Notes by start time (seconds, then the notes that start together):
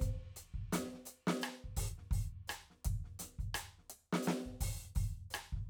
0.01 closed hi-hat, kick
0.36 closed hi-hat
0.54 kick
0.73 closed hi-hat, snare
0.94 snare
1.06 closed hi-hat, hi-hat pedal
1.27 snare
1.41 cross-stick, hi-hat pedal
1.64 kick
1.77 open hi-hat, kick
1.98 snare
2.02 snare
2.11 open hi-hat, kick
2.47 closed hi-hat, cross-stick, hi-hat pedal
2.70 snare
2.85 kick, closed hi-hat
3.04 snare
3.19 closed hi-hat, snare
3.39 closed hi-hat, kick
3.54 closed hi-hat, cross-stick
3.78 snare
3.90 closed hi-hat
4.13 snare
4.23 hi-hat pedal
4.27 snare
4.46 kick
4.61 open hi-hat, kick
4.83 snare
4.95 open hi-hat, kick
5.30 cross-stick, hi-hat pedal
5.35 closed hi-hat
5.52 kick, snare